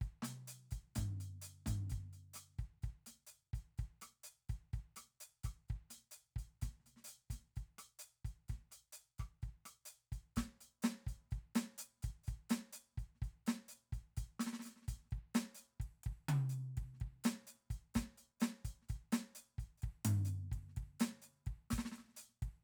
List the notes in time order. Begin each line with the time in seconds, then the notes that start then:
0.01 closed hi-hat, kick
0.07 kick
0.23 closed hi-hat, snare, mid tom
0.48 closed hi-hat, hi-hat pedal
0.71 closed hi-hat, kick
0.96 closed hi-hat, kick, floor tom
1.20 closed hi-hat
1.42 closed hi-hat, hi-hat pedal
1.66 closed hi-hat, kick, floor tom
1.74 kick
1.90 closed hi-hat, kick
1.99 snare
2.13 closed hi-hat
2.34 closed hi-hat, cross-stick, hi-hat pedal
2.59 closed hi-hat, kick
2.83 closed hi-hat, kick
2.89 kick
3.06 closed hi-hat, snare
3.27 hi-hat pedal
3.31 closed hi-hat
3.54 closed hi-hat, kick
3.78 closed hi-hat, kick
4.02 closed hi-hat, cross-stick, snare
4.24 closed hi-hat, hi-hat pedal
4.49 closed hi-hat, kick
4.73 closed hi-hat, kick
4.79 kick
4.96 closed hi-hat, cross-stick, snare
5.21 hi-hat pedal
5.44 closed hi-hat, kick, cross-stick, snare
5.69 closed hi-hat, kick
5.76 kick
5.90 closed hi-hat, snare
6.12 hi-hat pedal
6.16 closed hi-hat
6.36 closed hi-hat, kick
6.42 kick
6.62 closed hi-hat, kick, snare
6.69 kick
6.80 snare, mid tom
6.86 closed hi-hat, snare
6.96 snare
7.04 closed hi-hat, hi-hat pedal
7.30 closed hi-hat, kick, snare
7.56 closed hi-hat, kick
7.78 closed hi-hat, cross-stick, snare
7.99 closed hi-hat, hi-hat pedal
8.25 closed hi-hat, kick
8.49 closed hi-hat, kick, snare
8.55 kick
8.72 closed hi-hat, cross-stick
8.93 closed hi-hat, hi-hat pedal
9.19 closed hi-hat, kick, cross-stick
9.42 closed hi-hat, kick
9.49 kick
9.66 closed hi-hat, cross-stick
9.86 hi-hat pedal
9.90 closed hi-hat
10.12 closed hi-hat, kick
10.36 closed hi-hat, kick, snare
10.43 kick
10.61 closed hi-hat
10.83 closed hi-hat, snare, hi-hat pedal
11.07 closed hi-hat, kick
11.12 kick
11.31 closed hi-hat, kick
11.38 kick
11.55 closed hi-hat, snare
11.78 closed hi-hat, hi-hat pedal
12.03 closed hi-hat, kick
12.10 kick
12.24 closed hi-hat, hi-hat pedal
12.28 kick
12.34 kick
12.50 closed hi-hat, snare
12.73 closed hi-hat, hi-hat pedal
12.98 closed hi-hat, kick
13.15 snare
13.22 closed hi-hat, kick
13.47 closed hi-hat, snare
13.69 closed hi-hat, hi-hat pedal
13.93 closed hi-hat, kick
13.98 kick
14.17 closed hi-hat, kick
14.23 kick
14.40 closed hi-hat, snare
14.47 snare
14.53 snare
14.60 snare, hi-hat pedal
14.66 closed hi-hat, snare
14.71 snare
14.76 snare
14.82 snare
14.88 closed hi-hat, kick, snare
14.94 kick, snare
14.98 snare
15.05 snare
15.11 kick, open hi-hat
15.18 kick
15.35 closed hi-hat, snare
15.55 closed hi-hat, hi-hat pedal
15.80 kick, closed hi-hat
15.86 kick
16.04 kick, closed hi-hat
16.12 kick
16.29 closed hi-hat, mid tom
16.50 closed hi-hat, hi-hat pedal
16.77 kick, closed hi-hat
16.83 kick
16.94 snare
17.00 kick, closed hi-hat
17.07 kick
17.24 closed hi-hat, snare
17.47 hi-hat pedal
17.54 snare
17.71 closed hi-hat, kick
17.95 open hi-hat, kick, snare
18.02 kick
18.18 closed hi-hat
18.40 open hi-hat, snare, hi-hat pedal
18.65 closed hi-hat, kick
18.82 snare
18.89 closed hi-hat, kick
18.96 kick
19.12 closed hi-hat, snare
19.35 closed hi-hat, hi-hat pedal
19.59 closed hi-hat, kick
19.64 kick
19.78 hi-hat pedal
19.82 kick, closed hi-hat
20.05 closed hi-hat, floor tom
20.25 closed hi-hat, hi-hat pedal
20.52 kick, closed hi-hat
20.58 kick
20.69 snare
20.77 kick, closed hi-hat
20.83 kick
21.00 closed hi-hat, snare
21.22 closed hi-hat, hi-hat pedal
21.46 kick, closed hi-hat
21.52 kick
21.71 open hi-hat, kick, snare
21.78 kick, snare
21.85 snare
21.92 snare
21.96 snare, closed hi-hat
22.04 snare
22.14 snare, hi-hat pedal
22.18 closed hi-hat, snare
22.23 snare
22.29 snare
22.43 kick, closed hi-hat
22.48 kick